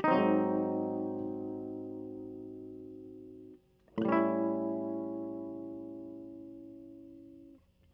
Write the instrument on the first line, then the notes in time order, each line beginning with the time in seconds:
electric guitar
0.00 G4
0.05 C4 D#4
0.12 F#3
0.20 G#2
4.00 A2
4.06 G3 C#4
4.13 E4